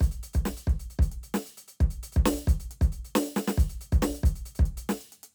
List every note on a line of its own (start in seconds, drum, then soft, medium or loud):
0.01 closed hi-hat medium
0.01 kick loud
0.12 closed hi-hat medium
0.23 closed hi-hat medium
0.34 closed hi-hat medium
0.34 kick loud
0.46 snare loud
0.57 closed hi-hat medium
0.67 kick loud
0.67 closed hi-hat soft
0.80 closed hi-hat medium
0.90 closed hi-hat soft
0.99 closed hi-hat medium
0.99 kick loud
1.12 closed hi-hat medium
1.24 closed hi-hat medium
1.34 snare loud
1.46 closed hi-hat medium
1.58 closed hi-hat medium
1.68 closed hi-hat medium
1.81 kick loud
1.81 closed hi-hat soft
1.91 closed hi-hat medium
2.03 closed hi-hat medium
2.13 closed hi-hat medium
2.13 kick loud
2.26 snare loud
2.37 closed hi-hat medium
2.48 closed hi-hat medium
2.48 kick loud
2.60 closed hi-hat medium
2.71 closed hi-hat medium
2.82 closed hi-hat medium
2.82 kick loud
2.92 closed hi-hat medium
3.05 closed hi-hat soft
3.16 snare loud
3.27 closed hi-hat soft
3.37 snare loud
3.48 snare loud
3.58 closed hi-hat medium
3.58 kick loud
3.70 closed hi-hat medium
3.81 closed hi-hat medium
3.92 closed hi-hat medium
3.92 kick loud
4.03 snare loud
4.15 closed hi-hat medium
4.24 closed hi-hat medium
4.24 kick loud
4.46 closed hi-hat medium
4.55 closed hi-hat medium
4.60 kick loud
4.66 closed hi-hat medium
4.78 closed hi-hat medium
4.89 snare loud
5.01 closed hi-hat medium
5.13 closed hi-hat medium
5.24 closed hi-hat medium